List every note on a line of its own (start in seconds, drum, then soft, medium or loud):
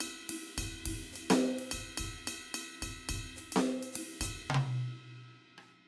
0.01 hi-hat pedal medium
0.01 ride bell loud
0.30 ride loud
0.58 kick soft
0.58 hi-hat pedal medium
0.58 ride bell loud
0.63 kick soft
0.66 kick soft
0.86 kick soft
0.86 ride loud
1.13 hi-hat pedal medium
1.13 ride bell medium
1.31 snare loud
1.31 ride bell loud
1.59 ride medium
1.72 kick soft
1.72 hi-hat pedal medium
1.72 ride bell loud
1.98 kick soft
1.98 ride bell loud
2.27 hi-hat pedal medium
2.27 ride bell loud
2.55 ride bell loud
2.82 kick soft
2.82 hi-hat pedal medium
2.82 ride bell loud
3.09 kick soft
3.09 ride bell loud
3.16 kick soft
3.37 hi-hat pedal medium
3.37 ride medium
3.53 snare loud
3.53 ride bell loud
3.83 ride bell medium
3.93 hi-hat pedal medium
3.93 ride loud
4.21 kick soft
4.21 hi-hat pedal loud
4.21 ride bell loud
4.27 kick soft
4.50 high tom loud
4.55 high tom loud
5.58 cross-stick soft
5.69 cross-stick soft